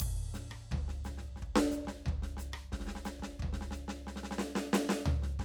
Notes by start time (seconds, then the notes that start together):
0.01 kick, ride
0.35 snare, hi-hat pedal
0.51 kick, cross-stick
0.72 kick, floor tom
0.89 snare
1.05 snare, hi-hat pedal
1.18 snare
1.23 kick
1.37 snare
1.43 kick
1.56 snare
1.71 snare, hi-hat pedal
1.86 kick, snare
2.06 kick, floor tom
2.23 snare
2.37 snare, hi-hat pedal
2.53 kick, cross-stick
2.73 kick, snare
2.80 snare
2.86 snare
2.88 snare
2.96 snare
3.05 snare, hi-hat pedal
3.20 kick, snare
3.40 kick, floor tom
3.53 snare
3.62 snare
3.71 snare, hi-hat pedal
3.89 snare
4.08 snare
4.17 snare
4.24 snare
4.32 snare
4.39 snare
4.56 snare
4.74 snare
4.90 snare
5.06 floor tom
5.23 snare
5.40 kick, snare